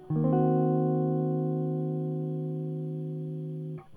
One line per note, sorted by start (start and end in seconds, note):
0.11 3.82 D#3
0.17 2.92 A#3
0.25 3.78 C4
0.33 3.83 F#4